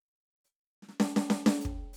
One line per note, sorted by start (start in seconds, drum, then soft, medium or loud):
0.44 hi-hat pedal soft
0.82 snare soft
0.89 snare soft
1.00 snare loud
1.16 snare medium
1.30 snare loud
1.46 snare loud
1.61 closed hi-hat medium
1.65 kick medium
1.93 hi-hat pedal medium